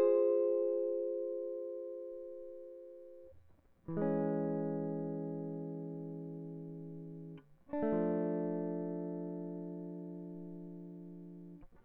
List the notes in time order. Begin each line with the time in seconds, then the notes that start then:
0.00 C5
3.90 E3
3.98 G#3
4.03 C#4
7.74 D4
7.84 A3
7.94 F3